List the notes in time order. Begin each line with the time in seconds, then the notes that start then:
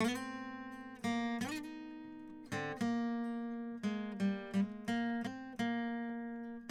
0.01 C4
1.05 A#3
1.42 D4
2.52 D3 C4
2.82 A#3
3.84 G#3 A#3
4.21 G3 A#3
4.55 G3
4.89 A#3
5.26 C4
5.60 A#3